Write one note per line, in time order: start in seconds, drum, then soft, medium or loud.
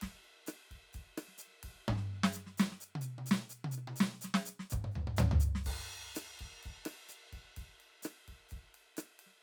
0.01 kick soft
0.01 snare medium
0.01 hi-hat pedal soft
0.01 ride medium
0.07 kick soft
0.24 ride soft
0.46 cross-stick medium
0.46 hi-hat pedal medium
0.46 ride medium
0.71 kick soft
0.71 ride soft
0.93 kick soft
0.93 hi-hat pedal soft
0.93 ride medium
1.17 cross-stick medium
1.17 ride medium
1.28 snare soft
1.38 hi-hat pedal medium
1.47 snare soft
1.63 kick soft
1.63 ride medium
1.69 kick soft
1.73 snare soft
1.88 kick soft
1.88 mid tom loud
1.94 kick soft
1.94 snare soft
2.13 snare soft
2.23 snare loud
2.32 snare soft
2.32 hi-hat pedal medium
2.46 snare soft
2.57 snare loud
2.57 hi-hat pedal medium
2.72 snare soft
2.80 hi-hat pedal medium
2.95 high tom medium
3.01 hi-hat pedal medium
3.18 high tom medium
3.26 hi-hat pedal medium
3.31 snare loud
3.42 high tom soft
3.49 hi-hat pedal medium
3.64 high tom medium
3.71 hi-hat pedal medium
3.78 cross-stick soft
3.87 high tom medium
3.96 hi-hat pedal medium
4.00 snare loud
4.13 snare soft
4.21 snare medium
4.21 hi-hat pedal medium
4.34 snare medium
4.45 snare soft
4.45 hi-hat pedal loud
4.59 snare medium
4.70 kick medium
4.70 hi-hat pedal medium
4.70 mid tom medium
4.84 mid tom medium
4.91 kick soft
4.91 hi-hat pedal soft
4.95 floor tom medium
5.07 mid tom medium
5.16 hi-hat pedal medium
5.16 floor tom loud
5.31 floor tom loud
5.40 hi-hat pedal medium
5.55 snare medium
5.64 kick soft
5.64 hi-hat pedal soft
5.64 crash medium
5.73 kick soft
5.78 snare soft
6.15 cross-stick medium
6.15 hi-hat pedal medium
6.15 ride loud
6.39 kick soft
6.39 ride soft
6.44 kick soft
6.44 snare soft
6.49 snare soft
6.63 kick soft
6.63 hi-hat pedal soft
6.63 ride soft
6.71 kick soft
6.85 cross-stick medium
6.85 ride loud
7.09 hi-hat pedal medium
7.09 ride soft
7.32 kick soft
7.32 ride soft
7.38 kick soft
7.56 kick soft
7.56 hi-hat pedal soft
7.56 ride medium
7.62 kick soft
7.80 ride soft
8.02 cross-stick medium
8.02 hi-hat pedal medium
8.02 ride medium
8.28 kick soft
8.28 snare soft
8.28 ride soft
8.49 kick soft
8.49 hi-hat pedal soft
8.49 ride soft
8.74 ride soft
8.97 cross-stick medium
8.97 hi-hat pedal medium
8.97 ride medium
9.19 ride medium
9.26 snare soft